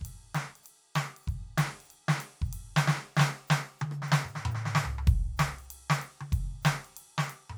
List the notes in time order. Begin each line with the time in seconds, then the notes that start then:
0.01 kick, ride
0.35 snare, hi-hat pedal, ride
0.56 ride
0.63 hi-hat pedal, ride
0.95 snare, hi-hat pedal, ride
1.16 ride
1.22 hi-hat pedal
1.27 kick, ride
1.58 snare, hi-hat pedal, ride
1.80 ride
1.85 hi-hat pedal
1.90 ride
2.08 snare, hi-hat pedal
2.20 ride
2.42 kick, hi-hat pedal
2.53 ride
2.76 snare
2.88 snare
3.16 snare, hi-hat pedal
3.19 snare
3.47 snare, hi-hat pedal
3.79 hi-hat pedal, high tom
3.91 cross-stick
4.02 snare
4.07 hi-hat pedal
4.12 snare
4.24 hi-hat pedal, mid tom
4.35 snare
4.45 mid tom
4.51 hi-hat pedal
4.55 snare
4.65 snare
4.75 snare, hi-hat pedal
4.85 floor tom
4.98 floor tom
5.07 kick, ride
5.37 snare, hi-hat pedal, ride
5.59 ride
5.63 hi-hat pedal
5.70 ride
5.90 snare
5.94 hi-hat pedal
6.02 ride
6.21 high tom
6.32 kick, ride
6.62 snare, hi-hat pedal, ride
6.85 ride
6.97 ride
7.18 snare
7.23 hi-hat pedal
7.30 ride
7.50 mid tom